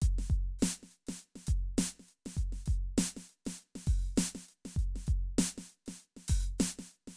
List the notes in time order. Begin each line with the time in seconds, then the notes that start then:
0.01 closed hi-hat, kick
0.18 snare
0.30 kick, open hi-hat
0.59 snare, hi-hat pedal
0.63 closed hi-hat
0.83 snare
0.91 closed hi-hat
1.07 snare, closed hi-hat
1.19 closed hi-hat
1.35 snare
1.47 closed hi-hat, kick
1.78 closed hi-hat, snare, hi-hat pedal
1.99 snare
2.08 closed hi-hat
2.25 snare, closed hi-hat
2.37 kick, closed hi-hat
2.52 snare
2.66 kick, open hi-hat
2.97 closed hi-hat, snare, hi-hat pedal
3.17 snare
3.29 closed hi-hat
3.45 snare, closed hi-hat
3.58 closed hi-hat
3.75 snare
3.87 kick, open hi-hat
4.16 closed hi-hat, snare, hi-hat pedal
4.35 snare
4.48 closed hi-hat
4.65 snare, closed hi-hat
4.76 kick, closed hi-hat
4.96 snare
5.07 kick, closed hi-hat
5.38 open hi-hat, snare, hi-hat pedal
5.58 snare
5.69 closed hi-hat
5.86 snare, closed hi-hat
6.00 closed hi-hat
6.17 snare
6.28 open hi-hat, kick
6.58 closed hi-hat, snare, hi-hat pedal
6.79 snare
6.91 closed hi-hat
7.07 snare, closed hi-hat